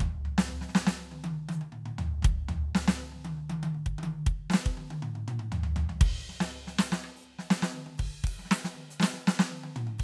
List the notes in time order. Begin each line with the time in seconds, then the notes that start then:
0.01 kick, floor tom
0.26 floor tom
0.39 snare
0.49 floor tom
0.62 snare
0.70 snare
0.76 snare, hi-hat pedal
0.88 snare
1.12 high tom
1.25 high tom
1.49 hi-hat pedal, high tom
1.62 high tom
1.73 mid tom
1.86 mid tom
1.99 floor tom
2.23 kick, floor tom
2.49 floor tom
2.76 snare
2.88 snare
3.02 high tom
3.13 high tom
3.25 high tom
3.38 high tom
3.50 high tom
3.64 high tom
3.75 mid tom
3.87 kick
3.99 high tom
4.04 high tom
4.27 kick
4.51 snare
4.54 snare
4.67 kick
4.78 high tom
4.91 high tom
5.03 mid tom
5.16 mid tom
5.29 mid tom
5.40 mid tom
5.53 floor tom
5.64 floor tom
5.77 floor tom
5.90 floor tom
6.02 kick, ride
6.30 snare
6.41 snare
6.68 snare
6.77 snare
6.79 snare
6.93 snare
7.05 cross-stick
7.17 open hi-hat
7.39 snare
7.51 snare
7.63 snare
7.75 high tom
7.87 high tom
7.99 kick, crash
8.25 kick, ride
8.40 snare
8.46 snare
8.52 snare
8.65 snare
8.76 high tom
8.91 hi-hat pedal
9.01 snare
9.03 snare
9.14 snare
9.28 snare
9.40 snare
9.52 high tom
9.64 high tom
9.77 mid tom
9.88 mid tom
9.99 kick, crash